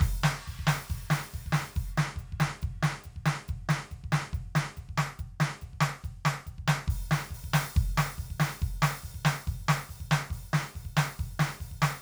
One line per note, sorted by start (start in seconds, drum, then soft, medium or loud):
0.01 open hi-hat loud
0.01 kick medium
0.24 snare loud
0.24 crash medium
0.47 open hi-hat medium
0.47 kick soft
0.59 kick soft
0.67 open hi-hat medium
0.67 snare loud
0.82 snare soft
0.90 open hi-hat medium
0.90 kick medium
1.10 open hi-hat medium
1.10 snare loud
1.31 open hi-hat medium
1.31 kick soft
1.31 snare soft
1.46 kick soft
1.52 open hi-hat medium
1.52 snare loud
1.75 open hi-hat medium
1.75 kick medium
1.75 snare soft
1.97 closed hi-hat medium
1.97 snare loud
2.16 closed hi-hat medium
2.16 kick soft
2.16 snare soft
2.32 kick soft
2.40 closed hi-hat medium
2.40 snare loud
2.62 closed hi-hat medium
2.62 kick medium
2.83 closed hi-hat medium
2.83 snare loud
3.03 closed hi-hat medium
3.03 kick soft
3.03 snare soft
3.16 kick soft
3.26 closed hi-hat medium
3.26 snare loud
3.47 closed hi-hat medium
3.47 kick medium
3.47 snare soft
3.69 closed hi-hat medium
3.69 snare loud
3.90 closed hi-hat soft
3.90 kick soft
3.90 snare soft
4.04 kick soft
4.12 closed hi-hat medium
4.12 snare loud
4.32 closed hi-hat medium
4.32 kick medium
4.32 snare soft
4.55 closed hi-hat medium
4.55 snare loud
4.76 closed hi-hat medium
4.76 kick soft
4.76 snare soft
4.89 kick soft
4.98 closed hi-hat medium
4.98 snare loud
5.17 closed hi-hat medium
5.17 kick soft
5.17 snare soft
5.40 closed hi-hat medium
5.40 snare loud
5.61 closed hi-hat medium
5.61 kick soft
5.73 kick soft
5.81 closed hi-hat medium
5.81 snare loud
6.01 closed hi-hat medium
6.01 kick soft
6.01 snare soft
6.25 closed hi-hat medium
6.25 snare loud
6.43 closed hi-hat medium
6.43 kick soft
6.43 snare soft
6.58 kick soft
6.68 closed hi-hat loud
6.68 snare loud
6.88 open hi-hat medium
6.88 kick medium
7.11 open hi-hat medium
7.11 snare loud
7.31 open hi-hat medium
7.31 kick soft
7.31 snare soft
7.44 kick soft
7.54 open hi-hat loud
7.54 snare loud
7.73 open hi-hat medium
7.73 kick loud
7.73 snare soft
7.97 open hi-hat loud
7.97 snare loud
8.18 open hi-hat soft
8.18 kick soft
8.30 kick soft
8.40 open hi-hat medium
8.40 snare loud
8.59 open hi-hat soft
8.59 kick medium
8.59 snare soft
8.82 open hi-hat loud
8.82 snare loud
9.03 open hi-hat medium
9.03 kick soft
9.03 snare soft
9.14 kick soft
9.25 open hi-hat medium
9.25 snare loud
9.47 open hi-hat soft
9.47 kick medium
9.68 open hi-hat medium
9.68 snare loud
9.89 open hi-hat medium
9.89 kick soft
9.89 snare soft
10.00 kick soft
10.11 open hi-hat medium
10.11 snare loud
10.30 open hi-hat medium
10.30 kick medium
10.30 snare soft
10.53 open hi-hat medium
10.53 snare loud
10.75 open hi-hat soft
10.75 kick soft
10.75 snare soft
10.85 kick soft
10.97 open hi-hat medium
10.97 snare loud
11.19 open hi-hat medium
11.19 kick medium
11.39 open hi-hat medium
11.39 snare loud
11.60 open hi-hat medium
11.60 kick soft
11.60 snare soft
11.71 kick soft
11.82 open hi-hat medium
11.82 snare loud